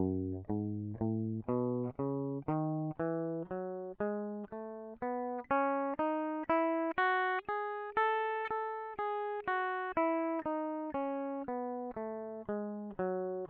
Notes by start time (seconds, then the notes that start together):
0.00 F#2
0.52 G#2
1.04 A2
1.50 B2
2.01 C#3
2.50 D#3
3.01 E3
3.52 F#3
4.02 G#3
4.54 A3
5.03 B3
5.52 C#4
6.00 D#4
6.50 E4
6.99 F#4
7.49 G#4
7.98 A4
8.51 A4
8.99 G#4
9.48 F#4
9.98 E4
10.47 D#4
10.95 C#4
11.49 B3
11.98 A3
12.50 G#3
13.00 F#3